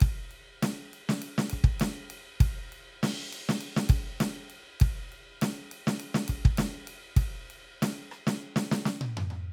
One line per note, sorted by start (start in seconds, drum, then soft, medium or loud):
0.01 kick loud
0.01 ride loud
0.31 ride medium
0.63 snare loud
0.63 ride loud
0.94 ride medium
1.09 snare loud
1.22 ride loud
1.38 snare loud
1.50 kick medium
1.50 ride loud
1.64 kick loud
1.80 snare loud
1.80 ride loud
2.10 ride loud
2.41 kick loud
2.41 ride loud
2.73 ride medium
3.03 snare loud
3.03 ride loud
3.33 ride loud
3.49 snare loud
3.61 ride loud
3.77 snare loud
3.90 kick loud
3.90 ride loud
4.21 snare loud
4.21 ride loud
4.50 ride medium
4.80 kick loud
4.80 ride loud
5.12 ride medium
5.42 snare loud
5.42 ride loud
5.72 ride loud
5.87 snare loud
6.00 ride loud
6.15 snare loud
6.28 kick medium
6.28 ride loud
6.45 kick loud
6.58 snare loud
6.58 ride loud
6.88 ride loud
7.17 kick loud
7.17 ride loud
7.50 ride medium
7.83 snare loud
7.83 ride loud
8.12 cross-stick medium
8.27 snare loud
8.56 snare loud
8.72 snare loud
8.86 snare loud
9.01 high tom loud
9.17 mid tom loud
9.31 mid tom medium